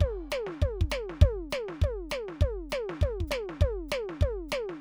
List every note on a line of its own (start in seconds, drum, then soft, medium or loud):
0.01 kick medium
0.01 high tom loud
0.31 snare loud
0.31 hi-hat pedal medium
0.31 high tom loud
0.47 snare medium
0.62 kick medium
0.62 high tom loud
0.81 kick medium
0.90 snare loud
0.90 hi-hat pedal medium
0.90 high tom loud
1.10 snare soft
1.22 kick loud
1.22 high tom loud
1.51 snare loud
1.51 hi-hat pedal medium
1.51 high tom loud
1.69 snare soft
1.82 kick medium
1.82 high tom loud
2.10 snare loud
2.10 hi-hat pedal medium
2.10 high tom loud
2.29 snare soft
2.41 kick medium
2.41 high tom loud
2.70 snare loud
2.70 hi-hat pedal medium
2.70 high tom loud
2.90 snare medium
3.02 kick medium
3.02 high tom loud
3.21 kick medium
3.28 hi-hat pedal medium
3.28 high tom loud
3.32 snare loud
3.50 snare soft
3.61 kick medium
3.61 high tom loud
3.89 snare loud
3.89 hi-hat pedal medium
3.89 high tom loud
4.10 snare soft
4.21 kick medium
4.21 high tom loud
4.49 snare loud
4.49 hi-hat pedal medium
4.49 high tom loud
4.70 snare soft